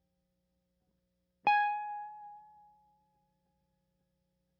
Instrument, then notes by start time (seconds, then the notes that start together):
electric guitar
1.48 G#5